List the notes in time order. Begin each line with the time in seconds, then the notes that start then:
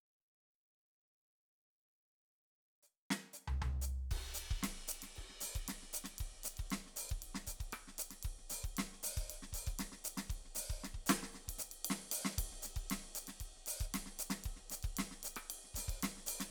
2.83 hi-hat pedal
3.10 snare
3.33 hi-hat pedal
3.47 floor tom
3.62 floor tom
3.81 hi-hat pedal
4.11 kick, crash, ride
4.34 hi-hat pedal
4.38 ride
4.51 kick
4.63 snare, ride
4.80 snare
4.88 hi-hat pedal, ride
5.02 snare, ride
5.15 kick, ride
5.29 snare
5.40 snare, hi-hat pedal, ride
5.55 kick, ride
5.68 snare, ride
5.82 snare
5.93 hi-hat pedal, ride
6.04 snare, ride
6.18 kick, ride
6.32 snare
6.43 snare, hi-hat pedal, ride
6.57 kick, ride
6.70 snare, ride
6.86 snare
6.96 hi-hat pedal, ride
7.09 kick, ride
7.22 ride
7.34 snare
7.47 kick, hi-hat pedal, ride
7.60 kick, ride
7.72 cross-stick, ride
7.87 snare
7.98 hi-hat pedal, ride
8.10 snare, ride
8.23 kick, ride
8.38 snare
8.50 snare, hi-hat pedal, ride
8.64 kick, ride
8.77 snare, ride
8.93 snare
9.03 snare, hi-hat pedal, ride
9.17 kick, ride
9.30 ride
9.42 snare
9.53 kick, hi-hat pedal, ride
9.67 kick, ride
9.79 snare, ride
9.92 snare
10.04 hi-hat pedal, ride
10.17 snare, ride
10.28 kick, hi-hat pedal, ride
10.45 snare
10.55 snare, hi-hat pedal, ride
10.70 kick, ride
10.83 snare, ride
10.94 kick
11.06 snare, hi-hat pedal, ride
11.23 snare
11.32 snare, hi-hat pedal
11.48 kick, ride
11.58 snare, hi-hat pedal
11.71 ride
11.84 hi-hat pedal, ride
11.90 snare
12.11 hi-hat pedal, ride
12.25 snare
12.38 kick, ride
12.52 snare
12.62 snare, hi-hat pedal, ride
12.76 kick, ride
12.90 snare, ride
13.02 snare
13.15 hi-hat pedal, ride
13.27 snare, ride
13.40 kick, ride
13.55 snare
13.66 snare, hi-hat pedal, ride
13.80 kick, ride
13.94 snare, ride
14.06 snare
14.19 hi-hat pedal, ride
14.30 snare, ride
14.44 kick, ride
14.56 snare
14.70 snare, hi-hat pedal, ride
14.83 kick, ride
14.97 snare, ride
15.11 snare
15.23 hi-hat pedal, ride
15.36 cross-stick, ride
15.49 hi-hat pedal, ride
15.64 snare
15.74 kick, snare, hi-hat pedal, ride
15.88 kick, ride
16.00 snare, hi-hat pedal, ride
16.17 snare
16.26 hi-hat pedal, ride
16.40 snare, ride